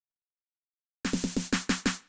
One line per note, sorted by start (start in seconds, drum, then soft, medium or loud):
1.05 snare loud
1.05 hi-hat pedal soft
1.13 snare loud
1.24 snare loud
1.37 snare loud
1.53 snare loud
1.53 hi-hat pedal medium
1.69 snare loud
1.86 snare loud